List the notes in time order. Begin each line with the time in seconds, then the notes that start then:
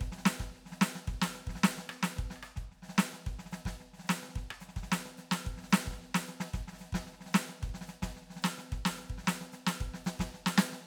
0.01 kick, snare
0.07 kick
0.12 snare
0.18 snare
0.26 snare, hi-hat pedal
0.40 kick, snare
0.55 snare
0.62 snare
0.66 snare
0.72 snare
0.81 snare, hi-hat pedal
0.96 snare
1.08 kick, snare
1.14 kick
1.22 snare
1.26 cross-stick
1.33 snare, hi-hat pedal
1.40 snare
1.46 kick, snare
1.49 kick, snare
1.56 snare
1.64 snare
1.78 snare
1.90 cross-stick, hi-hat pedal
2.03 snare
2.17 kick, snare
2.25 kick
2.31 snare
2.36 cross-stick
2.43 cross-stick, hi-hat pedal
2.56 kick, snare
2.71 snare
2.76 snare
2.80 snare
2.83 snare
2.89 snare
2.94 snare
2.98 snare, hi-hat pedal
3.14 snare
3.27 kick, snare
3.39 snare
3.46 snare
3.52 snare, hi-hat pedal
3.66 kick, snare
3.80 snare
3.86 snare
3.91 snare
3.93 snare
3.99 snare
4.04 snare, hi-hat pedal
4.09 snare
4.23 snare
4.29 snare
4.36 kick, snare
4.51 cross-stick
4.61 snare, hi-hat pedal
4.69 snare
4.76 kick, snare
4.83 snare
4.92 snare
5.06 snare
5.18 snare, hi-hat pedal
5.32 snare
5.45 kick, snare
5.50 snare
5.54 kick, snare
5.58 snare
5.64 snare
5.70 snare, hi-hat pedal
5.86 kick, snare
5.92 snare
6.03 snare
6.15 snare
6.26 snare, hi-hat pedal
6.40 snare
6.54 kick, snare
6.60 kick
6.68 snare
6.73 snare
6.78 snare, hi-hat pedal
6.81 snare
6.93 kick, snare
6.98 kick
7.07 snare
7.13 snare
7.20 snare
7.26 snare
7.31 snare, hi-hat pedal
7.35 snare
7.49 snare
7.62 kick, snare
7.69 kick
7.74 snare
7.81 snare
7.87 snare, hi-hat pedal
8.03 kick, snare
8.16 snare
8.22 snare
8.27 snare
8.30 snare
8.36 snare
8.42 snare, hi-hat pedal
8.59 snare
8.72 kick, snare
8.85 snare
8.95 snare, hi-hat pedal
9.04 snare
9.10 kick, snare
9.18 snare
9.24 snare
9.28 snare
9.41 snare
9.53 snare, hi-hat pedal
9.67 snare
9.80 kick, snare
9.87 kick
9.94 snare
10.05 snare, hi-hat pedal
10.20 kick, snare
10.25 kick
10.34 snare
10.46 snare
10.58 snare, hi-hat pedal
10.73 snare